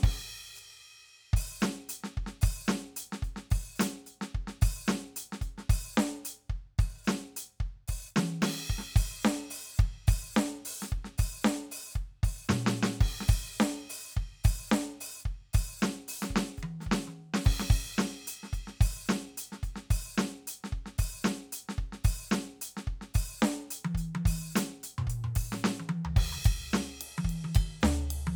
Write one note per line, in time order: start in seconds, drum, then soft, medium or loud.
0.04 kick loud
0.04 crash loud
0.56 hi-hat pedal medium
1.34 open hi-hat loud
1.34 kick loud
1.61 snare loud
1.61 hi-hat pedal medium
1.90 closed hi-hat loud
2.04 snare medium
2.18 kick medium
2.27 snare medium
2.42 open hi-hat loud
2.42 kick loud
2.66 snare loud
2.66 hi-hat pedal medium
2.97 closed hi-hat loud
3.13 snare medium
3.23 closed hi-hat soft
3.23 kick medium
3.37 snare medium
3.51 open hi-hat loud
3.51 kick loud
3.76 snare loud
3.76 hi-hat pedal medium
3.81 closed hi-hat loud
4.07 closed hi-hat medium
4.22 snare medium
4.35 kick medium
4.48 snare medium
4.62 open hi-hat loud
4.62 kick loud
4.87 snare loud
4.87 hi-hat pedal medium
5.17 closed hi-hat loud
5.33 snare medium
5.42 closed hi-hat medium
5.42 kick medium
5.58 snare soft
5.70 open hi-hat loud
5.70 kick loud
5.94 hi-hat pedal medium
5.98 snare loud
6.26 closed hi-hat loud
6.50 kick medium
6.79 open hi-hat medium
6.79 kick loud
7.05 snare loud
7.05 hi-hat pedal medium
7.37 closed hi-hat loud
7.61 kick medium
7.88 open hi-hat loud
7.88 kick medium
8.08 hi-hat pedal medium
8.17 snare loud
8.17 high tom loud
8.43 snare loud
8.43 crash loud
8.70 kick medium
8.79 snare medium
8.96 open hi-hat loud
8.96 kick loud
9.23 snare loud
9.23 hi-hat pedal medium
9.51 open hi-hat loud
9.78 kick loud
9.78 hi-hat pedal medium
10.08 open hi-hat loud
10.08 kick loud
10.34 snare loud
10.34 hi-hat pedal medium
10.66 open hi-hat loud
10.83 snare medium
10.89 kick medium
10.89 hi-hat pedal medium
11.05 snare soft
11.19 open hi-hat loud
11.19 kick loud
11.42 snare loud
11.42 hi-hat pedal medium
11.72 open hi-hat loud
11.93 kick medium
11.93 hi-hat pedal medium
12.24 open hi-hat loud
12.24 kick loud
12.45 hi-hat pedal medium
12.50 snare loud
12.50 mid tom loud
12.67 snare loud
12.75 hi-hat pedal soft
12.83 snare loud
13.01 kick loud
13.01 crash loud
13.21 snare medium
13.28 open hi-hat loud
13.28 kick loud
13.60 snare loud
13.60 hi-hat pedal medium
13.90 open hi-hat loud
14.12 hi-hat pedal medium
14.17 kick medium
14.45 open hi-hat loud
14.45 kick loud
14.68 hi-hat pedal medium
14.72 snare loud
15.01 open hi-hat loud
15.20 hi-hat pedal medium
15.26 kick medium
15.54 open hi-hat loud
15.54 kick loud
15.80 snare loud
15.80 hi-hat pedal medium
16.09 open hi-hat loud
16.23 snare medium
16.23 hi-hat pedal soft
16.31 kick soft
16.36 snare loud
16.58 kick soft
16.58 hi-hat pedal soft
16.63 high tom medium
16.81 snare soft
16.81 hi-hat pedal soft
16.87 kick soft
16.92 snare loud
16.98 hi-hat pedal soft
17.08 high tom medium
17.34 snare loud
17.45 kick loud
17.45 crash loud
17.60 snare medium
17.71 open hi-hat loud
17.71 kick loud
17.95 snare loud
17.95 hi-hat pedal medium
18.28 closed hi-hat loud
18.44 snare soft
18.53 closed hi-hat soft
18.53 kick medium
18.68 snare soft
18.81 open hi-hat loud
18.81 kick loud
19.07 snare loud
19.07 hi-hat pedal medium
19.38 closed hi-hat loud
19.53 snare medium
19.64 closed hi-hat soft
19.64 kick medium
19.76 snare medium
19.91 open hi-hat loud
19.91 kick loud
20.15 snare loud
20.15 hi-hat pedal medium
20.48 closed hi-hat loud
20.65 snare medium
20.73 kick medium
20.73 closed hi-hat soft
20.86 snare soft
20.99 open hi-hat loud
20.99 kick loud
21.22 snare loud
21.22 hi-hat pedal medium
21.53 closed hi-hat loud
21.69 snare medium
21.78 kick medium
21.78 closed hi-hat soft
21.93 snare soft
22.05 open hi-hat loud
22.05 kick loud
22.28 snare loud
22.28 hi-hat pedal medium
22.62 closed hi-hat loud
22.77 snare medium
22.88 kick medium
23.02 snare soft
23.15 open hi-hat loud
23.15 kick loud
23.39 snare loud
23.39 hi-hat pedal medium
23.71 closed hi-hat loud
23.85 high tom loud
23.95 closed hi-hat medium
23.95 kick medium
24.16 high tom loud
24.26 open hi-hat loud
24.26 kick loud
24.53 snare loud
24.53 hi-hat pedal medium
24.57 closed hi-hat loud
24.84 closed hi-hat loud
24.99 mid tom loud
25.07 kick medium
25.07 closed hi-hat medium
25.25 mid tom medium
25.36 kick medium
25.36 open hi-hat loud
25.53 snare medium
25.59 hi-hat pedal medium
25.65 snare loud
25.80 high tom medium
25.90 high tom loud
26.06 floor tom medium
26.17 kick loud
26.17 crash loud
26.33 floor tom medium
26.45 kick loud
26.45 ride bell medium
26.71 snare loud
26.71 hi-hat pedal medium
27.01 ride loud
27.19 high tom loud
27.25 kick medium
27.30 ride medium
27.45 high tom medium
27.55 kick loud
27.55 ride bell loud
27.81 snare loud
27.81 floor tom loud
27.81 hi-hat pedal soft
28.11 ride loud
28.27 high tom loud